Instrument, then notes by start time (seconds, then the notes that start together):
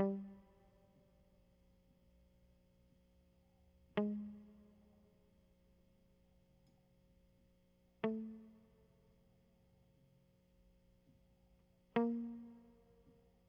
electric guitar
0.00 G3
3.98 G#3
8.04 A3
11.97 A#3